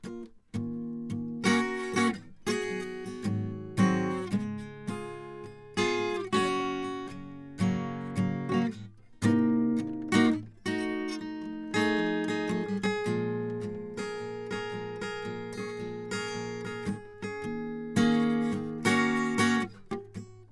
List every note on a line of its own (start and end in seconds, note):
0.01 0.19 D3
0.01 0.30 A#3
0.07 0.30 F4
0.55 1.11 D#3
0.55 1.11 A#3
0.55 1.12 C#4
0.55 1.44 F4
1.11 1.63 D#3
1.11 1.47 A#3
1.11 1.45 C#4
1.45 1.64 A#3
1.45 1.97 C#4
1.45 1.97 F#4
1.45 1.94 A#4
1.94 2.19 F#4
1.94 2.10 A#4
1.98 2.15 A#3
1.98 2.16 C#4
2.47 2.70 B3
2.47 3.06 F#4
2.47 2.84 G#4
2.70 2.85 D#3
2.70 2.82 F#3
2.70 3.07 B3
3.06 3.57 B3
3.06 3.80 F#4
3.25 6.00 G#2
3.25 3.79 D#3
3.25 3.79 F#3
3.79 4.16 D#3
3.79 4.29 F#3
3.79 4.29 C4
3.79 4.34 F#4
3.79 4.11 G#4
4.32 6.03 C#3
4.32 5.81 G#3
4.32 4.49 B3
4.89 5.03 C4
4.89 5.48 F4
4.89 5.73 G#4
5.45 5.67 C4
5.78 6.02 B3
5.78 6.26 F4
5.78 6.18 G#4
6.33 6.44 A3
6.33 6.84 C#4
6.33 7.10 F#4
6.38 7.07 C#3
6.38 7.09 F#3
6.84 7.61 C#4
7.09 7.16 C#3
7.09 7.62 F#3
7.61 8.17 C#3
7.61 8.17 F#3
7.61 8.18 A#3
7.61 8.07 C#4
8.18 8.71 C#3
8.18 8.56 F#3
8.18 8.55 A#3
8.50 8.64 F#4
8.55 8.70 F#3
8.55 8.74 A#3
9.23 9.78 C3
9.23 9.80 A#3
9.23 10.15 D#4
9.79 10.31 C3
9.79 10.14 A#3
10.13 10.37 A#3
10.13 10.44 D#4
10.13 10.32 F#4
10.67 11.45 A3
10.67 11.23 D#4
10.67 11.17 F#4
11.23 11.76 D#4
11.43 11.67 F3
11.43 11.78 A3
11.75 12.30 A3
11.75 12.31 D#4
11.75 12.29 G#4
11.98 12.50 F3
12.29 12.49 A3
12.29 12.51 D#4
12.29 12.80 G#4
12.51 12.68 F3
12.51 12.66 A3
12.51 12.68 D#4
12.84 13.99 G#4
13.07 13.61 A#2
13.07 13.63 F3
13.62 13.71 A#2
13.62 14.18 F3
13.98 14.53 G#4
13.98 14.49 A#4
14.20 14.72 A#2
14.20 14.53 F3
14.52 15.03 G#4
14.52 14.99 A#4
14.72 15.00 A#2
14.72 15.24 F3
15.02 15.57 G#4
15.02 15.53 A#4
15.26 15.79 A#2
15.26 15.61 F3
15.54 16.07 A#4
15.59 15.74 C#4
15.59 16.14 G#4
15.79 16.13 A#2
15.79 16.15 F3
16.12 16.31 C#4
16.12 16.67 G#4
16.12 16.63 A#4
16.35 17.00 A#2
16.35 16.84 F3
16.66 16.79 C#4
16.66 16.90 G#4
16.66 16.90 A#4
16.87 17.03 D#3
16.87 17.23 G#4
17.23 17.96 C#4
17.23 17.98 G#4
17.23 17.93 A#4
17.43 17.97 D#3
17.43 17.97 A#3
17.97 18.52 D#3
17.97 18.54 A#3
17.97 18.56 C#4
17.97 18.82 G#4
17.97 18.42 A#4
18.53 18.88 D#3
18.53 18.88 A#3
18.86 19.67 D#3
18.86 19.41 A#3
18.86 19.40 C#4
18.86 19.40 F#4
18.86 19.37 A#4
19.39 19.68 A#3
19.39 19.69 C#4
19.39 19.70 F#4
19.39 19.62 A#4